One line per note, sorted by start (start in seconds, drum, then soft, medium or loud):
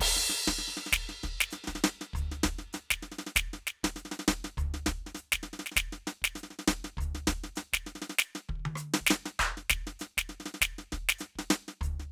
0.01 kick medium
0.01 crash loud
0.08 kick soft
0.17 snare soft
0.30 snare medium
0.30 hi-hat pedal soft
0.48 kick soft
0.48 snare loud
0.59 snare soft
0.68 snare soft
0.78 snare medium
0.87 snare soft
0.93 kick soft
0.93 snare loud
0.93 hi-hat pedal soft
0.99 kick soft
1.10 snare soft
1.24 kick soft
1.24 snare soft
1.33 kick soft
1.41 snare loud
1.51 snare medium
1.51 hi-hat pedal medium
1.65 snare soft
1.68 kick soft
1.68 snare medium
1.76 snare medium
1.84 snare loud
2.02 snare medium
2.14 kick soft
2.14 floor tom loud
2.14 hi-hat pedal soft
2.22 kick soft
2.32 snare soft
2.44 kick soft
2.44 snare loud
2.54 kick soft
2.59 snare soft
2.73 snare medium
2.73 hi-hat pedal medium
2.91 kick soft
2.91 snare loud
3.03 snare soft
3.12 snare soft
3.19 snare medium
3.27 snare medium
3.36 kick soft
3.36 snare loud
3.36 hi-hat pedal soft
3.42 kick soft
3.54 snare soft
3.68 snare medium
3.84 kick soft
3.84 snare loud
3.97 snare soft
3.97 hi-hat pedal soft
4.06 snare soft
4.12 snare medium
4.20 snare medium
4.29 kick soft
4.29 snare loud
4.45 snare medium
4.58 kick soft
4.58 floor tom loud
4.58 hi-hat pedal soft
4.74 snare soft
4.87 kick soft
4.87 snare medium
4.94 kick soft
4.97 kick soft
5.07 snare soft
5.15 snare soft
5.15 hi-hat pedal medium
5.33 kick soft
5.33 snare loud
5.44 snare medium
5.60 snare medium
5.67 snare medium
5.72 snare soft
5.77 kick soft
5.77 snare loud
5.77 hi-hat pedal soft
5.93 snare soft
6.08 snare medium
6.22 kick soft
6.22 snare loud
6.36 snare soft
6.36 hi-hat pedal soft
6.44 snare soft
6.51 snare soft
6.59 snare soft
6.68 kick soft
6.68 snare loud
6.85 snare medium
6.98 kick soft
6.98 floor tom loud
6.98 hi-hat pedal soft
7.15 snare soft
7.28 kick soft
7.28 snare loud
7.38 kick soft
7.44 snare soft
7.56 snare medium
7.56 hi-hat pedal medium
7.74 kick soft
7.74 snare loud
7.87 snare soft
7.96 snare soft
8.02 snare medium
8.10 snare medium
8.19 snare loud
8.19 hi-hat pedal medium
8.36 snare medium
8.49 kick soft
8.49 high tom medium
8.56 kick soft
8.60 kick soft
8.66 high tom loud
8.76 cross-stick soft
8.76 hi-hat pedal medium
8.94 snare loud
9.01 kick soft
9.07 snare loud
9.11 snare loud
9.26 snare medium
9.40 kick soft
9.40 percussion loud
9.40 hi-hat pedal soft
9.49 kick soft
9.58 snare soft
9.70 kick soft
9.70 snare loud
9.78 kick soft
9.87 snare soft
10.00 snare medium
10.00 hi-hat pedal medium
10.18 kick soft
10.18 snare loud
10.30 snare soft
10.41 snare soft
10.46 snare medium
10.55 snare soft
10.62 kick soft
10.62 snare loud
10.62 hi-hat pedal soft
10.79 snare soft
10.93 kick soft
10.93 snare medium
11.02 kick soft
11.09 snare loud
11.19 snare medium
11.19 hi-hat pedal medium
11.36 kick soft
11.36 snare medium
11.51 snare loud
11.69 snare soft
11.82 kick soft
11.82 floor tom loud
11.82 hi-hat pedal medium
12.00 snare soft